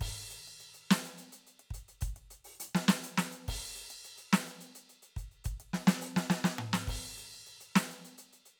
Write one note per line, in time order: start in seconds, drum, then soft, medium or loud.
0.01 kick soft
0.01 crash loud
0.10 kick soft
0.30 closed hi-hat medium
0.48 closed hi-hat soft
0.60 closed hi-hat medium
0.74 closed hi-hat medium
0.91 snare loud
1.05 closed hi-hat medium
1.18 closed hi-hat medium
1.32 closed hi-hat medium
1.47 closed hi-hat soft
1.60 closed hi-hat soft
1.71 closed hi-hat medium
1.71 kick soft
1.88 closed hi-hat soft
2.01 closed hi-hat medium
2.01 kick soft
2.08 kick soft
2.16 closed hi-hat soft
2.31 closed hi-hat medium
2.45 open hi-hat medium
2.54 hi-hat pedal soft
2.60 closed hi-hat loud
2.75 snare loud
2.88 snare loud
3.04 closed hi-hat loud
3.18 snare loud
3.32 closed hi-hat medium
3.48 kick soft
3.48 crash loud
3.65 closed hi-hat soft
3.76 closed hi-hat medium
3.90 closed hi-hat medium
4.05 closed hi-hat medium
4.18 closed hi-hat medium
4.33 snare loud
4.47 closed hi-hat medium
4.61 closed hi-hat medium
4.75 closed hi-hat medium
4.89 closed hi-hat soft
5.02 closed hi-hat medium
5.17 closed hi-hat medium
5.17 kick soft
5.31 closed hi-hat soft
5.44 closed hi-hat medium
5.44 kick soft
5.52 kick soft
5.60 closed hi-hat medium
5.74 snare medium
5.87 snare loud
6.02 open hi-hat loud
6.02 hi-hat pedal soft
6.17 snare loud
6.30 snare loud
6.30 hi-hat pedal soft
6.44 snare loud
6.59 mid tom medium
6.73 snare loud
6.88 kick soft
6.88 crash loud
6.96 kick soft
7.05 closed hi-hat soft
7.18 closed hi-hat medium
7.34 closed hi-hat soft
7.46 closed hi-hat medium
7.61 closed hi-hat medium
7.76 snare loud
7.91 closed hi-hat medium
8.05 closed hi-hat medium
8.18 closed hi-hat medium
8.33 closed hi-hat soft
8.46 closed hi-hat medium